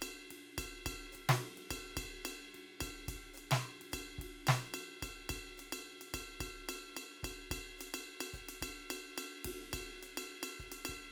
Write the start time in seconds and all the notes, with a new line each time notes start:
0.01 hi-hat pedal, ride bell
0.31 ride
0.58 kick, hi-hat pedal, ride bell
0.86 kick, ride bell
0.95 kick
1.12 hi-hat pedal, ride
1.29 snare, closed hi-hat, ride
1.58 ride
1.71 kick, hi-hat pedal, ride bell
1.97 kick, ride bell
2.05 kick
2.25 hi-hat pedal, ride bell
2.55 ride
2.81 kick, hi-hat pedal, ride bell
2.87 kick
3.08 kick, ride bell
3.14 kick
3.17 kick
3.34 hi-hat pedal
3.38 ride bell
3.51 snare, ride bell
3.81 ride
3.92 kick, hi-hat pedal, ride bell
4.19 kick, ride
4.27 kick
4.47 snare, hi-hat pedal, ride bell
4.74 ride bell
5.02 kick, hi-hat pedal, ride bell
5.30 kick, ride bell
5.36 kick
5.39 kick
5.57 hi-hat pedal, ride bell
5.73 ride bell
6.01 ride bell
6.14 kick, hi-hat pedal, ride bell
6.41 kick, ride bell
6.49 kick
6.69 hi-hat pedal, ride bell
6.97 ride bell
7.23 kick, hi-hat pedal, ride bell
7.51 kick, ride bell
7.57 kick
7.79 hi-hat pedal, ride bell
7.94 ride bell
8.21 ride bell
8.34 kick, hi-hat pedal
8.49 ride bell
8.62 kick, ride bell
8.91 hi-hat pedal, ride bell
9.18 ride bell
9.45 kick, hi-hat pedal, ride
9.73 kick, ride bell
10.03 hi-hat pedal, ride bell
10.18 ride bell
10.43 ride bell
10.59 kick, hi-hat pedal
10.72 ride bell
10.85 kick, ride bell